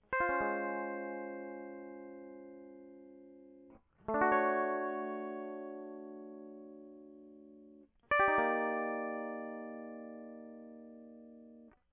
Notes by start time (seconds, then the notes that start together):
0.13 C5
0.21 F4
0.30 C#4
0.42 G#3
4.09 A3
4.15 D4
4.22 F#4
4.33 C#5
6.18 C#5
8.12 D5
8.20 G4
8.29 D#4
8.39 A#3